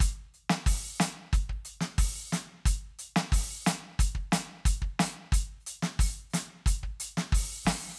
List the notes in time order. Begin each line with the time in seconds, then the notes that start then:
0.01 closed hi-hat, kick
0.34 closed hi-hat
0.50 snare
0.67 open hi-hat, kick
0.98 closed hi-hat, snare, hi-hat pedal
1.33 closed hi-hat, kick
1.50 kick, crash
1.65 closed hi-hat
1.81 snare
1.99 open hi-hat, kick
2.31 closed hi-hat, snare, hi-hat pedal
2.66 closed hi-hat, kick
2.99 closed hi-hat
3.17 snare
3.33 open hi-hat, kick
3.65 closed hi-hat, snare, hi-hat pedal
4.00 closed hi-hat, kick
4.15 kick
4.32 closed hi-hat, snare, hi-hat pedal
4.66 open hi-hat, kick
4.82 kick
5.00 open hi-hat, snare
5.08 hi-hat pedal
5.33 closed hi-hat, kick
5.61 hi-hat pedal
5.67 closed hi-hat
5.83 snare
6.00 open hi-hat, kick
6.31 snare, hi-hat pedal
6.35 closed hi-hat
6.67 closed hi-hat, kick
6.84 kick
7.00 closed hi-hat
7.18 snare
7.33 open hi-hat, kick
7.66 open hi-hat, kick, snare
7.89 snare